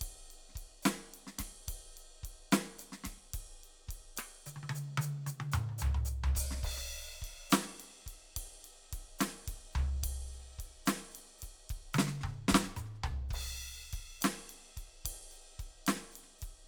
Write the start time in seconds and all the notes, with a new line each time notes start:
0.01 kick, ride
0.30 ride
0.49 snare
0.55 kick, ride
0.82 snare, hi-hat pedal, ride
1.14 ride
1.27 snare
1.39 kick, snare, ride
1.67 kick, hi-hat pedal, ride
1.74 kick
1.97 ride
2.23 kick, ride
2.52 snare, hi-hat pedal, ride
2.79 hi-hat pedal, ride
2.92 snare
3.04 kick, snare, ride
3.34 kick, ride
3.40 kick
3.64 ride
3.87 kick, snare, ride
4.17 cross-stick, hi-hat pedal, ride
4.46 hi-hat pedal, high tom
4.56 high tom
4.63 high tom
4.69 high tom
4.75 hi-hat pedal
4.98 hi-hat pedal, high tom
5.27 hi-hat pedal, high tom
5.40 open hi-hat, high tom
5.52 hi-hat pedal, mid tom
5.69 mid tom
5.78 floor tom, hi-hat pedal
5.95 mid tom
6.05 hi-hat pedal
6.24 floor tom
6.35 kick, hi-hat pedal
6.42 kick
6.51 snare
6.57 snare
6.63 kick, crash
6.70 kick
6.74 kick, cross-stick
7.22 kick, ride
7.50 snare, hi-hat pedal, ride
7.62 snare
7.78 snare, ride
7.88 snare
7.93 snare
7.97 snare
7.99 snare
8.06 kick, ride
8.36 kick, ride
8.64 ride
8.93 kick, ride
8.99 kick
9.19 snare, hi-hat pedal, ride
9.27 snare
9.48 kick, ride
9.54 kick
9.72 kick, floor tom, hi-hat pedal
10.03 kick, ride
10.09 kick
10.33 ride
10.39 snare
10.43 snare
10.46 snare
10.48 snare
10.59 kick, ride
10.86 snare, hi-hat pedal, ride
10.97 snare
11.11 hi-hat pedal, ride
11.38 hi-hat pedal, ride
11.43 kick
11.70 kick, ride
11.77 kick
11.94 hi-hat pedal, high tom
11.98 snare
12.07 snare
12.20 kick, snare, mid tom
12.28 snare
12.31 snare
12.48 kick, snare
12.55 snare
12.63 snare
12.76 hi-hat pedal, mid tom
12.85 snare
12.94 snare
13.04 kick, floor tom
13.09 kick
13.29 kick, cross-stick, hi-hat pedal
13.34 crash
13.38 kick
13.92 kick, snare, ride
13.99 kick
14.21 snare, hi-hat pedal, ride
14.49 ride
14.77 kick, ride
15.05 kick, ride
15.10 kick
15.31 hi-hat pedal, ride
15.59 kick, ride
15.87 snare, hi-hat pedal, ride
15.95 snare
16.12 hi-hat pedal, ride
16.23 snare
16.39 kick, hi-hat pedal, ride
16.64 snare